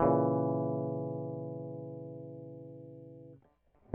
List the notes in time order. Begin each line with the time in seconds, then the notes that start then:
0.00 C#3 E3
0.06 A#2